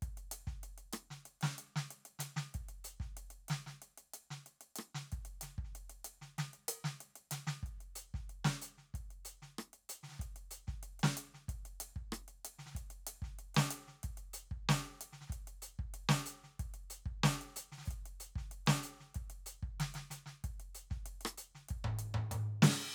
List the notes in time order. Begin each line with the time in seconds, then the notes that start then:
0.02 kick, closed hi-hat
0.17 closed hi-hat
0.31 closed hi-hat
0.47 kick, snare
0.63 closed hi-hat
0.78 closed hi-hat
0.93 cross-stick, closed hi-hat
1.10 snare
1.25 closed hi-hat
1.41 snare, closed hi-hat
1.58 closed hi-hat
1.76 snare
1.90 closed hi-hat
2.05 closed hi-hat
2.19 snare, closed hi-hat
2.36 snare
2.54 kick, closed hi-hat
2.68 closed hi-hat
2.84 closed hi-hat
3.00 kick, snare
3.17 closed hi-hat
3.30 closed hi-hat
3.48 snare, closed hi-hat
3.66 snare
3.82 closed hi-hat
3.97 closed hi-hat
4.13 closed hi-hat
4.30 snare
4.46 closed hi-hat
4.61 closed hi-hat
4.76 cross-stick, closed hi-hat
4.94 snare
5.12 kick, closed hi-hat
5.25 closed hi-hat
5.41 snare, closed hi-hat
5.58 kick
5.64 snare
5.75 closed hi-hat
5.89 closed hi-hat
6.04 closed hi-hat
6.21 snare
6.38 snare, closed hi-hat
6.53 closed hi-hat
6.68 closed hi-hat
6.84 snare
7.00 closed hi-hat
7.15 closed hi-hat
7.31 snare, closed hi-hat
7.47 snare
7.63 kick, closed hi-hat
7.80 closed hi-hat
7.95 closed hi-hat
8.14 kick, snare
8.29 closed hi-hat
8.44 snare, closed hi-hat
8.61 closed hi-hat
8.78 snare
8.94 kick, closed hi-hat
9.10 closed hi-hat
9.25 closed hi-hat
9.42 snare
9.58 cross-stick, closed hi-hat
9.73 closed hi-hat
9.89 closed hi-hat
10.03 snare
10.08 snare
10.12 snare
10.15 snare
10.19 kick, snare, closed hi-hat
10.36 closed hi-hat
10.51 closed hi-hat
10.67 kick, snare
10.83 closed hi-hat
10.99 snare, closed hi-hat
11.17 closed hi-hat
11.34 snare
11.48 kick, closed hi-hat
11.65 closed hi-hat
11.80 closed hi-hat
11.96 kick
12.12 cross-stick, closed hi-hat
12.28 closed hi-hat
12.45 closed hi-hat
12.59 snare
12.66 snare
12.71 kick, snare
12.76 closed hi-hat
12.90 closed hi-hat
13.07 closed hi-hat
13.22 kick, snare
13.39 closed hi-hat
13.54 snare, closed hi-hat
13.70 closed hi-hat
13.88 snare
14.03 kick, closed hi-hat
14.17 closed hi-hat
14.33 closed hi-hat
14.51 kick
14.69 snare, closed hi-hat
14.85 closed hi-hat
15.01 closed hi-hat
15.13 snare
15.21 snare
15.27 kick, snare
15.32 closed hi-hat
15.47 closed hi-hat
15.62 closed hi-hat
15.79 kick
15.94 closed hi-hat
16.09 snare, closed hi-hat
16.26 closed hi-hat
16.43 snare
16.59 kick, closed hi-hat
16.74 closed hi-hat
16.90 closed hi-hat
17.06 kick
17.23 snare, closed hi-hat
17.41 closed hi-hat
17.56 open hi-hat
17.72 snare
17.78 snare
17.81 snare
17.84 kick, snare, hi-hat pedal
17.91 closed hi-hat
18.05 closed hi-hat
18.20 closed hi-hat
18.36 kick, snare
18.51 closed hi-hat
18.66 snare, closed hi-hat
18.83 closed hi-hat
19.00 snare
19.14 kick, closed hi-hat
19.30 closed hi-hat
19.46 closed hi-hat
19.63 kick
19.80 snare, closed hi-hat
19.94 snare, closed hi-hat
20.10 closed hi-hat, snare
20.26 snare
20.44 kick, closed hi-hat
20.60 closed hi-hat
20.75 closed hi-hat
20.90 kick, snare
21.06 closed hi-hat
21.21 closed hi-hat
21.25 cross-stick
21.38 closed hi-hat
21.55 snare
21.68 kick, closed hi-hat
21.84 high tom
21.99 closed hi-hat
22.14 high tom
22.31 closed hi-hat, high tom
22.62 snare, crash